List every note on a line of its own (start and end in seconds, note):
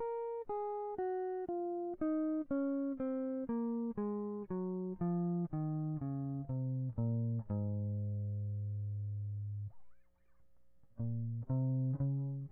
0.00 0.44 A#4
0.49 0.98 G#4
0.98 1.47 F#4
1.49 1.96 F4
2.01 2.44 D#4
2.51 2.98 C#4
3.00 3.47 C4
3.49 3.94 A#3
3.98 4.46 G#3
4.51 4.97 F#3
5.02 5.49 F3
5.54 6.01 D#3
6.02 6.45 C#3
6.50 6.93 C3
7.00 7.43 A#2
7.52 9.71 G#2
11.02 11.47 A#2
11.51 11.99 C3
12.02 12.50 C#3